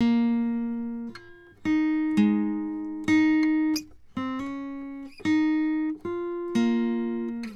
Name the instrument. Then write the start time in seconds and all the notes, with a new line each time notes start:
acoustic guitar
0.01 A#3
1.11 F4
1.66 D#4
2.18 G#3
3.09 D#4
4.17 C4
4.41 C#4
5.26 D#4
6.06 F4
6.56 A#3